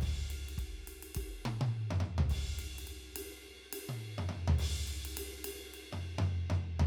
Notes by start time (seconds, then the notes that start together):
0.01 kick, ride
0.30 ride
0.48 ride
0.58 kick, ride
0.87 ride
1.03 ride
1.15 kick, ride
1.45 high tom
1.61 high tom
1.90 mid tom
2.00 mid tom
2.18 floor tom
2.30 kick, ride
2.59 ride
2.78 ride
2.87 ride
3.16 ride
3.73 ride
3.89 high tom
4.18 mid tom
4.29 mid tom
4.48 floor tom
4.58 ride
4.87 ride
5.05 ride
5.17 ride
5.44 ride
5.74 ride
5.93 mid tom
6.18 mid tom
6.50 mid tom
6.79 floor tom